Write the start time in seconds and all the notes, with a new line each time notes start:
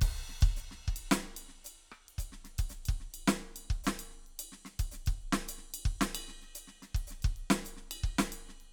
0.01 kick, hi-hat pedal, ride, crash
0.29 snare
0.41 kick, ride bell
0.56 snare, hi-hat pedal
0.71 snare
0.88 kick
0.96 ride bell
1.11 snare, hi-hat pedal
1.37 ride bell
1.49 snare
1.64 hi-hat pedal, ride bell
1.92 cross-stick
2.08 ride
2.18 kick, hi-hat pedal, ride bell
2.32 snare
2.45 snare, ride
2.58 kick, ride bell
2.69 snare, hi-hat pedal
2.86 kick, ride bell
3.00 snare
3.14 ride bell
3.28 snare, hi-hat pedal
3.56 ride bell
3.70 kick
3.84 snare, hi-hat pedal
3.99 ride bell
4.11 snare
4.20 snare
4.26 ride
4.39 hi-hat pedal, ride bell
4.52 snare
4.65 snare, ride
4.79 kick, ride bell
4.92 snare, hi-hat pedal
5.06 kick, ride bell
5.21 ride
5.33 snare
5.48 hi-hat pedal, ride bell
5.58 snare
5.74 ride bell
5.85 kick
6.01 snare, hi-hat pedal
6.15 ride bell
6.28 snare
6.42 snare, ride
6.55 hi-hat pedal, ride bell
6.67 snare
6.82 snare, ride
6.95 kick, ride
7.07 snare, hi-hat pedal
7.22 kick, ride bell
7.36 ride
7.50 snare
7.65 hi-hat pedal, ride bell
7.77 snare
7.91 ride bell
8.04 kick
8.19 snare, hi-hat pedal
8.32 ride bell
8.49 snare
8.60 snare, ride